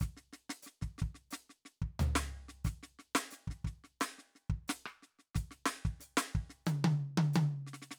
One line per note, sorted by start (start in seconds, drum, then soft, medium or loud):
0.01 kick medium
0.01 snare soft
0.01 hi-hat pedal medium
0.18 snare soft
0.33 snare soft
0.50 snare medium
0.63 snare soft
0.63 hi-hat pedal medium
0.82 kick soft
0.82 snare soft
0.99 kick medium
0.99 snare soft
1.15 snare soft
1.32 snare medium
1.32 hi-hat pedal medium
1.50 snare soft
1.66 snare soft
1.83 kick medium
2.00 floor tom loud
2.00 hi-hat pedal medium
2.16 snare loud
2.49 snare soft
2.65 kick medium
2.65 snare soft
2.65 hi-hat pedal medium
2.84 snare soft
3.00 snare soft
3.16 snare loud
3.31 snare soft
3.31 hi-hat pedal medium
3.48 kick soft
3.48 snare soft
3.65 kick soft
3.65 snare soft
3.85 snare soft
4.01 snare medium
4.01 hi-hat pedal medium
4.19 snare soft
4.36 snare soft
4.51 kick medium
4.69 snare loud
4.69 hi-hat pedal medium
4.87 cross-stick medium
5.03 snare soft
5.20 snare soft
5.36 kick medium
5.36 snare soft
5.36 hi-hat pedal medium
5.52 snare soft
5.67 snare loud
5.86 kick medium
5.86 snare soft
6.01 snare soft
6.01 hi-hat pedal medium
6.18 snare loud
6.36 kick medium
6.36 snare soft
6.50 snare soft
6.67 hi-hat pedal medium
6.67 high tom loud
6.85 high tom loud
7.18 high tom loud
7.34 hi-hat pedal medium
7.34 high tom loud
7.68 snare soft
7.74 snare soft
7.83 snare soft
7.92 snare medium